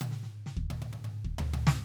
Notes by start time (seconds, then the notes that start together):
0.00 high tom, percussion
0.11 snare
0.23 snare
0.46 snare
0.57 kick
0.70 high tom
0.82 high tom
0.93 high tom
1.04 high tom
1.25 kick
1.38 floor tom
1.54 high tom
1.67 snare